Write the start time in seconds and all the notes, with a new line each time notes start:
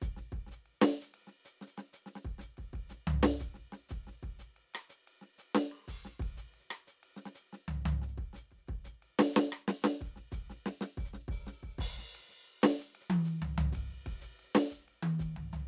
0.02 kick, hi-hat pedal, ride
0.16 snare
0.32 kick, ride
0.46 snare
0.51 hi-hat pedal
0.66 ride
0.74 hi-hat pedal
0.81 snare, ride
1.01 hi-hat pedal
1.14 ride
1.23 snare, hi-hat pedal
1.45 hi-hat pedal, ride
1.61 snare
1.67 hi-hat pedal
1.77 snare, ride
1.93 hi-hat pedal, ride
2.06 snare
2.15 snare
2.25 kick, ride
2.38 snare, hi-hat pedal
2.57 kick, ride
2.73 kick, ride
2.89 snare, hi-hat pedal
3.07 floor tom
3.23 snare
3.39 kick, hi-hat pedal, ride
3.54 snare
3.72 snare, ride
3.89 kick, hi-hat pedal, ride
4.07 snare
4.12 hi-hat pedal
4.23 kick, ride
4.39 snare, hi-hat pedal
4.56 ride
4.74 cross-stick, ride
4.89 hi-hat pedal
5.07 ride
5.21 snare
5.38 hi-hat pedal, ride
5.55 snare
5.71 crash
5.88 kick, hi-hat pedal, crash
6.05 snare
6.09 hi-hat pedal
6.19 kick, ride
6.37 hi-hat pedal
6.54 ride
6.60 hi-hat pedal
6.70 cross-stick, ride
6.87 hi-hat pedal
7.03 ride
7.16 snare
7.25 snare
7.35 hi-hat pedal, ride
7.53 snare
7.68 floor tom
7.85 floor tom, hi-hat pedal
8.02 snare
8.08 hi-hat pedal
8.18 kick, ride
8.33 snare, hi-hat pedal
8.51 kick, ride
8.58 hi-hat pedal
8.68 kick, ride
8.84 snare, hi-hat pedal
9.02 ride
9.19 snare
9.33 snare, hi-hat pedal
9.52 cross-stick
9.68 snare
9.82 snare, hi-hat pedal
10.01 kick, hi-hat pedal, ride
10.16 snare
10.31 kick, hi-hat pedal, ride
10.50 snare, hi-hat pedal
10.66 snare
10.81 snare, hi-hat pedal
10.97 open hi-hat, kick
11.05 hi-hat pedal
11.13 snare
11.28 open hi-hat, kick
11.47 snare
11.63 kick
11.78 kick, crash
11.98 snare
12.15 ride
12.29 snare, hi-hat pedal
12.48 ride
12.62 snare, ride
12.79 hi-hat pedal
12.95 ride
13.01 hi-hat pedal
13.10 high tom
13.25 hi-hat pedal, ride
13.42 floor tom
13.58 floor tom
13.72 kick, hi-hat pedal, ride
14.06 kick, ride
14.21 hi-hat pedal
14.39 ride
14.44 hi-hat pedal
14.55 snare
14.70 kick, hi-hat pedal
14.88 ride
15.03 high tom
15.19 kick, hi-hat pedal, ride
15.36 floor tom
15.53 floor tom, ride